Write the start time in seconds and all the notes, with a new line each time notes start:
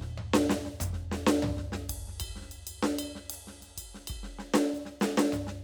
0.01 snare
0.18 floor tom
0.33 snare
0.50 snare
0.65 snare
0.80 kick, hi-hat pedal, mid tom
0.93 snare
1.12 snare
1.27 snare
1.42 floor tom
1.57 snare
1.72 snare
1.89 kick, hi-hat pedal, ride
1.96 kick
1.99 kick
2.07 snare
2.20 kick, ride bell
2.26 kick
2.35 snare
2.41 snare
2.47 snare
2.51 snare, ride bell
2.67 ride bell
2.83 snare
2.99 ride bell
3.15 snare
3.30 hi-hat pedal, ride
3.47 snare
3.60 kick, snare, ride bell
3.67 snare
3.77 kick, hi-hat pedal, ride bell
3.94 snare
4.07 kick, ride bell
4.16 kick
4.23 snare
4.39 snare
4.54 snare
4.63 snare
4.72 floor tom, hi-hat pedal
4.85 snare
5.00 snare, hi-hat pedal
5.17 snare
5.24 snare
5.32 hi-hat pedal, floor tom
5.47 snare